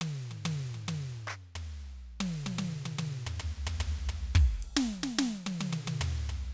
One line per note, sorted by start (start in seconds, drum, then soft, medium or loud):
0.00 mid tom loud
0.31 mid tom medium
0.45 mid tom loud
0.74 mid tom soft
0.88 mid tom loud
1.27 percussion medium
1.55 floor tom medium
2.20 high tom loud
2.46 high tom loud
2.58 high tom loud
2.85 mid tom medium
2.98 mid tom loud
3.26 floor tom medium
3.40 floor tom medium
3.67 floor tom loud
3.80 floor tom loud
4.09 floor tom medium
4.35 kick loud
4.35 ride medium
4.62 ride medium
4.76 snare loud
5.03 snare medium
5.19 snare loud
5.46 high tom loud
5.60 high tom loud
5.72 mid tom loud
5.87 mid tom loud
6.01 floor tom loud
6.29 floor tom medium